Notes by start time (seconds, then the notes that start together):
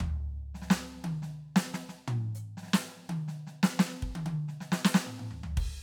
0.00 kick, floor tom
0.54 snare
0.62 snare
0.67 snare
0.70 snare
1.04 high tom
1.22 snare
1.56 snare
1.74 snare
1.89 snare
2.08 mid tom
2.35 hi-hat pedal
2.57 snare
2.63 snare
2.67 snare
2.73 snare
3.09 high tom
3.28 snare
3.47 snare
3.63 snare
3.79 snare
4.02 kick
4.15 high tom
4.26 high tom
4.48 snare
4.60 snare
4.72 snare
4.85 snare
4.94 snare
5.06 mid tom
5.19 mid tom
5.31 floor tom
5.43 floor tom
5.57 kick, crash